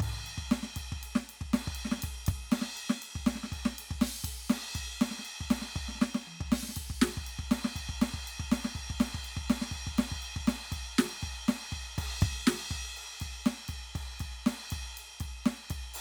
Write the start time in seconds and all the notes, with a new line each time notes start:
0.01 kick, ride
0.27 ride
0.39 kick
0.52 snare, ride
0.64 snare
0.77 kick, ride
0.93 kick
1.04 ride
1.16 snare
1.30 ride
1.42 kick
1.54 snare, ride
1.68 kick
1.76 ride
1.86 snare
1.92 snare
1.98 snare
2.03 kick, ride
2.27 kick, ride
2.52 snare, ride
2.62 snare
2.78 ride
2.91 snare
3.03 ride
3.16 kick
3.27 snare, ride
3.36 snare
3.44 snare
3.53 kick, ride
3.66 snare
3.79 ride
3.92 kick
4.02 snare, crash
4.25 kick, ride
4.51 snare, ride
4.76 kick, ride
5.02 snare, ride
5.12 snare
5.20 snare
5.26 ride
5.42 kick
5.51 snare, ride
5.62 snare
5.76 kick, ride
5.89 snare
5.96 snare
6.02 snare
6.16 snare
6.28 high tom
6.42 kick
6.53 snare, crash
6.64 snare
6.69 snare
6.77 kick, ride
6.91 kick
7.02 snare, ride
7.18 kick
7.28 ride
7.40 kick
7.52 snare, ride
7.65 snare
7.77 kick, ride
7.90 kick
8.02 snare, ride
8.15 kick
8.28 ride
8.41 kick
8.53 snare, ride
8.65 snare
8.76 kick, ride
8.91 kick
9.01 snare, ride
9.15 kick
9.26 ride
9.38 kick
9.51 snare, ride
9.62 snare
9.72 kick, ride
9.88 kick
9.99 snare, ride
10.12 kick
10.23 ride
10.37 kick
10.48 snare, ride
10.73 kick, ride
10.99 snare, ride
11.22 kick, ride
11.49 snare, ride
11.72 kick, ride
11.99 kick, ride
12.22 kick, ride
12.48 snare, ride
12.71 kick, ride
12.97 ride
13.21 kick, ride
13.47 snare, ride
13.69 kick, ride
13.96 kick, ride
14.21 kick, ride
14.47 snare, percussion, ride
14.71 kick, ride
14.98 ride
15.21 kick, ride
15.46 snare, percussion, ride
15.71 kick, ride
15.95 percussion, ride